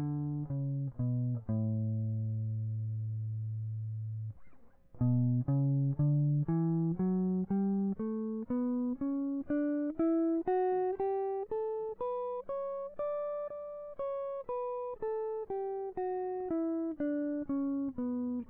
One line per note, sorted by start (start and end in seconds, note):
0.05 0.48 D3
0.54 0.92 C#3
1.02 1.40 B2
1.52 4.33 A2
5.03 5.45 B2
5.50 5.96 C#3
6.01 6.47 D3
6.50 6.97 E3
7.01 7.48 F#3
7.52 7.96 G3
8.01 8.47 A3
8.51 8.97 B3
9.02 9.46 C#4
9.51 9.95 D4
10.00 10.44 E4
10.48 11.00 F#4
11.00 11.47 G4
11.52 11.97 A4
12.01 12.44 B4
12.50 12.95 C#5
13.00 13.50 D5
13.50 13.99 D5
14.00 14.46 C#5
14.49 14.97 B4
15.03 15.46 A4
15.51 15.94 G4
15.98 16.52 F#4
16.51 16.96 E4
17.01 17.46 D4
17.50 17.93 C#4
17.99 18.45 B3